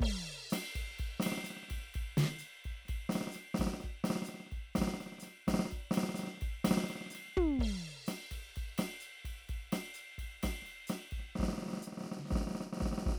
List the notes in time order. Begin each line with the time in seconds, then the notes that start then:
0.01 kick, crash
0.07 kick
0.51 snare, hi-hat pedal, ride
0.76 kick, ride
0.81 kick
0.88 snare
0.91 snare
0.96 kick, hi-hat pedal, ride
1.20 snare, ride
1.27 snare
1.32 snare
1.38 snare
1.45 snare, hi-hat pedal, ride
1.51 snare
1.57 snare
1.63 snare
1.69 kick, snare, ride
1.74 kick, snare
1.79 snare
1.82 snare
1.92 kick, hi-hat pedal, ride
2.01 kick
2.18 snare, ride
2.24 snare
2.39 hi-hat pedal, ride
2.46 snare
2.65 kick, ride
2.71 kick
2.86 kick, snare, hi-hat pedal, ride
2.95 kick
3.10 snare, ride
3.16 snare
3.21 snare
3.28 snare
3.32 snare, hi-hat pedal, ride
3.55 snare, ride
3.60 kick, snare
3.65 kick, snare
3.74 snare
3.81 kick, snare, ride
3.90 kick
4.05 snare, ride
4.11 snare
4.16 snare
4.23 snare, hi-hat pedal
4.28 snare, ride
4.35 snare
4.41 snare
4.47 snare
4.52 kick, snare, ride
4.58 kick
4.74 snare, hi-hat pedal, ride
4.78 kick, snare
4.83 kick
4.88 snare
4.94 snare
5.01 snare, ride
5.07 snare
5.13 snare
5.19 snare, hi-hat pedal
5.23 snare, ride
5.28 snare
5.48 kick, snare, ride
5.53 kick, snare
5.60 snare
5.66 snare, hi-hat pedal
5.72 kick, ride
5.78 kick
5.92 snare, ride
5.98 snare
6.04 snare
6.10 snare
6.15 snare, hi-hat pedal, ride
6.20 snare
6.24 snare
6.28 snare
6.35 snare
6.38 snare, ride
6.42 kick, snare
6.48 kick
6.65 kick, snare, ride
6.71 snare
6.78 snare
6.84 snare
6.89 snare, ride
6.96 snare
7.02 snare
7.07 snare, hi-hat pedal
7.11 snare
7.15 snare, ride
7.19 snare
7.23 snare
7.26 snare
7.29 snare
7.37 kick, floor tom
7.43 kick
7.54 hi-hat pedal
7.60 kick, crash
7.65 kick
8.07 snare, hi-hat pedal, ride
8.32 kick, snare, ride
8.37 kick
8.54 hi-hat pedal, ride
8.58 kick
8.78 snare, ride
9.01 hi-hat pedal, ride
9.25 kick, ride
9.30 kick
9.47 kick, hi-hat pedal, ride
9.55 kick
9.73 snare, ride
9.95 hi-hat pedal, ride
10.19 kick, ride
10.24 kick
10.42 kick, snare, hi-hat pedal, ride
10.49 kick
10.63 snare
10.67 ride
10.88 snare, hi-hat pedal, ride
11.12 kick, ride
11.18 kick, snare
11.35 snare, hi-hat pedal
11.39 kick, snare
11.44 kick, snare
11.49 snare
11.54 snare
11.58 snare
11.63 snare
11.67 snare
11.69 snare
11.71 snare
11.74 snare
11.78 snare
11.82 snare, hi-hat pedal
11.93 snare
12.01 snare
12.04 snare
12.07 snare
12.12 snare
12.17 snare
12.19 snare
12.23 snare
12.26 snare, hi-hat pedal
12.29 snare
12.31 kick, snare
12.38 kick, snare
12.48 snare
12.51 snare
12.56 snare
12.61 snare
12.67 snare
12.73 snare
12.78 snare
12.81 kick, snare
12.86 kick, snare
12.92 snare
12.98 snare
13.03 kick, snare, hi-hat pedal
13.07 snare
13.10 kick, snare
13.13 snare